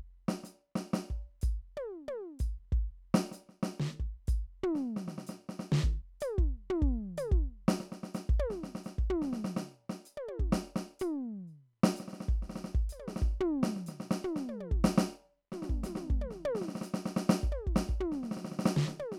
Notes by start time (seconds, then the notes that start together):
0.29 snare
0.44 snare, hi-hat pedal
0.76 snare
0.94 snare
1.10 kick
1.42 kick, hi-hat pedal
1.77 closed hi-hat, high tom
2.08 closed hi-hat, high tom
2.39 kick, hi-hat pedal
2.72 kick
3.15 snare
3.32 snare, hi-hat pedal
3.49 snare
3.63 snare
3.80 snare
4.00 kick
4.28 kick, hi-hat pedal
4.63 floor tom
4.75 snare
4.97 snare
5.08 snare
5.18 snare
5.27 snare, hi-hat pedal
5.49 snare
5.60 snare
5.72 snare
5.84 kick
6.21 hi-hat pedal, high tom
6.38 kick
6.70 floor tom
6.82 kick
7.18 hi-hat pedal, high tom
7.32 kick
7.68 snare
7.80 snare
7.92 snare
8.04 snare
8.14 snare, hi-hat pedal
8.29 kick
8.40 high tom
8.51 snare
8.64 snare
8.75 snare
8.84 snare, hi-hat pedal
8.99 kick
9.10 floor tom
9.22 snare
9.33 snare
9.45 snare
9.57 snare
9.90 snare
10.06 hi-hat pedal
10.17 high tom
10.28 high tom
10.40 kick
10.53 snare
10.76 snare
11.00 floor tom, hi-hat pedal
11.48 hi-hat pedal
11.84 snare
11.97 snare, hi-hat pedal
12.08 snare
12.13 snare
12.21 snare
12.29 kick
12.43 snare
12.50 snare
12.56 snare
12.65 snare
12.75 kick
12.89 hi-hat pedal, high tom
13.00 high tom
13.08 snare
13.16 snare
13.22 kick
13.40 floor tom
13.63 snare
13.77 snare
13.87 snare, hi-hat pedal
14.00 snare
14.11 snare
14.24 floor tom
14.36 snare
14.49 high tom
14.61 high tom
14.72 kick
14.84 snare, hi-hat pedal
14.98 snare
15.52 snare, floor tom
15.63 snare, floor tom
15.70 kick
15.84 snare, floor tom, hi-hat pedal
15.96 snare, floor tom
16.10 kick
16.21 high tom
16.31 snare
16.45 high tom
16.55 snare
16.62 snare
16.69 snare
16.76 snare
16.82 snare, hi-hat pedal
16.94 snare
17.06 snare
17.17 snare
17.30 snare
17.43 kick
17.52 high tom
17.67 kick
17.76 snare
17.89 kick
18.00 floor tom
18.12 snare
18.23 snare
18.32 snare
18.37 snare
18.45 snare
18.52 snare
18.59 snare
18.66 snare
18.77 snare
18.88 snare
19.00 high tom
19.12 snare